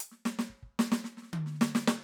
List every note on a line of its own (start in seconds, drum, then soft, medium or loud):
0.01 closed hi-hat loud
0.12 snare soft
0.26 snare loud
0.40 snare loud
0.50 kick soft
0.63 kick soft
0.80 snare loud
0.93 snare loud
1.05 snare medium
1.18 snare soft
1.23 snare soft
1.27 snare soft
1.32 snare soft
1.32 high tom loud
1.47 snare soft
1.51 snare soft
1.54 snare soft
1.58 snare soft
1.62 snare loud
1.76 snare loud
1.88 snare loud